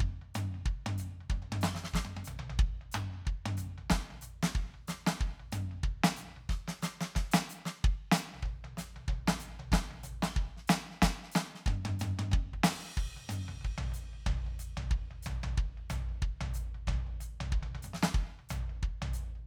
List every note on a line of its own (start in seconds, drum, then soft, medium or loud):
0.01 kick medium
0.01 floor tom medium
0.22 floor tom soft
0.35 hi-hat pedal medium
0.35 high tom loud
0.55 floor tom soft
0.66 kick medium
0.66 floor tom soft
0.87 high tom loud
0.99 floor tom soft
0.99 hi-hat pedal medium
1.21 floor tom soft
1.31 kick medium
1.31 high tom medium
1.43 floor tom medium
1.53 high tom loud
1.62 snare loud
1.62 hi-hat pedal medium
1.76 snare medium
1.85 snare medium
1.94 kick medium
1.94 snare loud
2.06 high tom medium
2.17 high tom medium
2.25 floor tom medium
2.25 hi-hat pedal medium
2.40 floor tom medium
2.50 floor tom medium
2.60 kick loud
2.82 floor tom soft
2.92 hi-hat pedal medium
2.92 high tom loud
3.14 floor tom soft
3.26 kick medium
3.26 floor tom soft
3.46 high tom loud
3.58 floor tom medium
3.58 hi-hat pedal medium
3.79 floor tom medium
3.91 kick medium
3.91 snare loud
4.11 floor tom medium
4.22 floor tom soft
4.22 hi-hat pedal medium
4.44 snare loud
4.56 kick medium
4.56 floor tom soft
4.75 floor tom soft
4.88 kick soft
4.88 snare medium
4.88 hi-hat pedal medium
5.07 snare loud
5.21 kick medium
5.21 floor tom medium
5.40 floor tom soft
5.53 hi-hat pedal medium
5.53 high tom loud
5.72 floor tom soft
5.84 kick medium
5.84 floor tom medium
6.04 snare loud
6.17 floor tom soft
6.17 hi-hat pedal medium
6.37 floor tom soft
6.50 kick medium
6.50 snare medium
6.69 snare medium
6.83 snare loud
6.83 hi-hat pedal medium
7.02 snare loud
7.16 kick medium
7.16 snare medium
7.32 closed hi-hat medium
7.32 snare loud
7.50 hi-hat pedal medium
7.66 snare medium
7.85 kick loud
8.12 snare loud
8.17 hi-hat pedal medium
8.35 floor tom medium
8.43 kick medium
8.43 floor tom medium
8.65 floor tom medium
8.78 snare medium
8.78 hi-hat pedal medium
8.97 floor tom medium
9.09 kick medium
9.09 floor tom medium
9.29 snare loud
9.41 floor tom medium
9.41 hi-hat pedal medium
9.60 floor tom medium
9.73 kick medium
9.73 snare loud
9.91 floor tom medium
10.04 floor tom medium
10.04 hi-hat pedal medium
10.23 snare medium
10.37 kick medium
10.37 floor tom medium
10.57 snare soft
10.68 snare loud
10.68 hi-hat pedal medium
10.91 snare soft
11.03 kick medium
11.03 snare loud
11.24 snare soft
11.32 snare loud
11.32 hi-hat pedal medium
11.55 snare soft
11.67 kick medium
11.67 high tom loud
11.86 high tom loud
12.00 hi-hat pedal medium
12.00 high tom loud
12.20 high tom loud
12.32 kick loud
12.32 high tom loud
12.54 kick medium
12.64 snare loud
12.64 hi-hat pedal medium
12.64 crash medium
12.70 snare medium
12.98 kick medium
12.98 floor tom medium
13.17 floor tom soft
13.30 hi-hat pedal medium
13.30 high tom loud
13.49 floor tom medium
13.62 kick medium
13.62 floor tom soft
13.79 floor tom loud
13.93 floor tom soft
13.93 hi-hat pedal medium
14.14 floor tom soft
14.27 kick medium
14.27 floor tom loud
14.47 floor tom soft
14.60 floor tom soft
14.60 hi-hat pedal medium
14.78 floor tom loud
14.92 kick medium
14.92 floor tom soft
15.12 floor tom soft
15.23 floor tom loud
15.23 hi-hat pedal medium
15.44 floor tom loud
15.58 kick medium
15.58 floor tom soft
15.78 floor tom soft
15.90 floor tom loud
15.90 hi-hat pedal medium
16.10 floor tom soft
16.23 kick medium
16.23 floor tom soft
16.42 floor tom loud
16.55 floor tom soft
16.55 hi-hat pedal medium
16.75 floor tom soft
16.88 kick medium
16.88 floor tom loud
17.07 floor tom soft
17.21 floor tom soft
17.21 hi-hat pedal medium
17.41 floor tom loud
17.53 kick medium
17.53 floor tom medium
17.63 floor tom medium
17.76 floor tom medium
17.83 hi-hat pedal medium
17.83 high tom medium
17.94 snare medium
18.04 snare loud
18.15 kick loud
18.15 floor tom soft
18.40 floor tom soft
18.50 floor tom loud
18.50 hi-hat pedal medium
18.70 floor tom soft
18.84 kick medium
18.84 floor tom soft
19.03 floor tom loud
19.14 floor tom soft
19.14 hi-hat pedal medium
19.36 floor tom soft